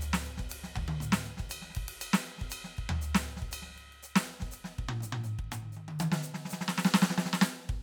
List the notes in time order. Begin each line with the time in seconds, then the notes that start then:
0.01 hi-hat pedal, ride
0.13 snare
0.24 hi-hat pedal, ride
0.37 kick, snare
0.49 hi-hat pedal, ride
0.64 snare
0.76 kick, floor tom
0.83 kick
0.88 high tom
1.01 hi-hat pedal, mid tom
1.12 snare
1.24 hi-hat pedal, mid tom
1.37 kick, snare
1.49 hi-hat pedal, ride bell
1.62 snare
1.70 snare, hi-hat pedal
1.75 kick, snare, ride
1.81 kick, snare
1.87 snare, ride
2.01 hi-hat pedal, ride bell
2.13 snare
2.23 hi-hat pedal, ride
2.38 kick, snare
2.50 hi-hat pedal, ride bell
2.64 snare
2.77 kick, ride
2.89 floor tom
3.01 hi-hat pedal, ride
3.15 snare
3.23 hi-hat pedal
3.37 snare
3.42 kick
3.51 hi-hat pedal, ride bell
3.62 snare
3.69 snare
3.74 snare, hi-hat pedal
3.78 snare, ride
3.84 snare
3.88 snare
3.92 ride
4.03 hi-hat pedal, ride
4.16 snare
4.21 cross-stick, hi-hat pedal
4.28 ride
4.40 kick, snare
4.51 hi-hat pedal, ride
4.64 snare
4.73 hi-hat pedal
4.78 kick, mid tom
4.89 mid tom
5.01 hi-hat pedal, mid tom
5.13 mid tom
5.24 hi-hat pedal, mid tom
5.39 kick, high tom
5.44 kick
5.52 hi-hat pedal, mid tom
5.62 high tom
5.72 hi-hat pedal
5.77 high tom
5.88 high tom
5.99 hi-hat pedal, high tom
6.12 snare
6.23 hi-hat pedal
6.34 snare
6.45 snare
6.50 snare, hi-hat pedal
6.61 snare
6.68 snare
6.78 snare
6.83 snare, hi-hat pedal
6.94 snare
7.02 snare
7.10 snare
7.18 snare
7.26 snare
7.33 snare
7.41 snare
7.52 snare
7.69 kick